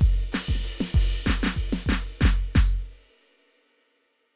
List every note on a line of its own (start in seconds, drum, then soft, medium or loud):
0.01 kick loud
0.01 hi-hat pedal soft
0.01 crash loud
0.32 snare loud
0.32 hi-hat pedal medium
0.32 ride loud
0.49 kick medium
0.49 snare medium
0.55 snare soft
0.60 snare soft
0.60 hi-hat pedal medium
0.64 ride medium
0.81 snare loud
0.95 kick loud
0.95 ride loud
1.26 kick medium
1.26 snare loud
1.30 snare loud
1.43 snare loud
1.47 snare loud
1.57 kick medium
1.73 snare loud
1.87 kick medium
1.87 snare loud
1.87 hi-hat pedal soft
1.92 snare loud
2.20 kick loud
2.20 snare loud
2.20 hi-hat pedal soft
2.25 snare loud
2.55 open hi-hat loud
2.55 kick loud
2.55 snare loud
2.70 hi-hat pedal medium